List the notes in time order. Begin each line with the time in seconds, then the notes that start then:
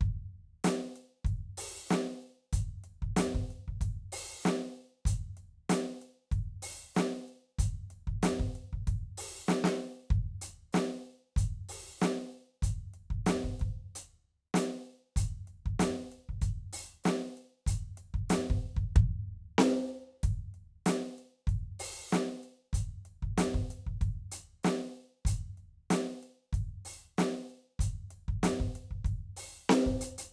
0.01 kick
0.64 closed hi-hat, snare
0.96 closed hi-hat
1.25 kick, closed hi-hat
1.58 open hi-hat
1.89 closed hi-hat, snare, hi-hat pedal
2.23 closed hi-hat
2.53 closed hi-hat, kick
2.84 closed hi-hat
3.02 kick
3.17 closed hi-hat, snare
3.35 kick
3.51 closed hi-hat
3.68 kick
3.81 kick, closed hi-hat
4.12 open hi-hat
4.43 snare, closed hi-hat, hi-hat pedal
5.06 closed hi-hat, kick
5.37 closed hi-hat
5.70 closed hi-hat, snare
6.02 closed hi-hat
6.32 kick, closed hi-hat
6.63 open hi-hat
6.95 snare, closed hi-hat, hi-hat pedal
7.28 closed hi-hat
7.59 closed hi-hat, kick
7.91 closed hi-hat
8.07 kick
8.23 closed hi-hat, snare
8.40 kick
8.55 closed hi-hat
8.73 kick
8.87 kick, closed hi-hat
9.18 open hi-hat
9.49 snare, hi-hat pedal
9.64 snare
10.11 kick
10.42 open hi-hat
10.73 snare, closed hi-hat, hi-hat pedal
11.37 closed hi-hat, kick
11.69 open hi-hat
12.01 closed hi-hat, snare, hi-hat pedal
12.33 closed hi-hat
12.63 closed hi-hat, kick
12.94 closed hi-hat
13.10 kick
13.26 closed hi-hat, snare
13.44 kick
13.60 kick, closed hi-hat
13.96 closed hi-hat
14.54 closed hi-hat, snare
15.16 closed hi-hat, kick
15.48 closed hi-hat
15.66 kick
15.80 closed hi-hat, snare
16.12 closed hi-hat
16.29 kick
16.42 closed hi-hat, kick
16.73 open hi-hat
17.04 snare, closed hi-hat, hi-hat pedal
17.37 closed hi-hat
17.67 closed hi-hat, kick
17.98 closed hi-hat
18.14 kick
18.30 closed hi-hat, snare
18.50 kick
18.77 kick
18.96 kick
19.58 snare
20.23 kick, closed hi-hat
20.54 closed hi-hat
20.86 closed hi-hat, snare
21.18 closed hi-hat
21.47 kick, closed hi-hat
21.80 open hi-hat
22.11 closed hi-hat, snare, hi-hat pedal
22.43 closed hi-hat
22.73 closed hi-hat, kick
23.05 closed hi-hat
23.23 kick
23.38 closed hi-hat, snare
23.54 kick
23.71 closed hi-hat
23.87 kick
24.01 kick, closed hi-hat
24.32 open hi-hat
24.64 closed hi-hat, snare, hi-hat pedal
24.96 closed hi-hat
25.25 closed hi-hat, kick
25.58 closed hi-hat
25.91 closed hi-hat, snare
26.23 closed hi-hat
26.53 kick, closed hi-hat
26.85 open hi-hat
27.18 snare, closed hi-hat, hi-hat pedal
27.50 closed hi-hat
27.79 closed hi-hat, kick
28.11 closed hi-hat
28.28 kick
28.43 closed hi-hat, snare
28.60 kick
28.76 closed hi-hat
28.91 kick
29.05 kick, closed hi-hat
29.37 open hi-hat
29.69 snare, hi-hat pedal
29.86 kick
30.01 closed hi-hat
30.18 closed hi-hat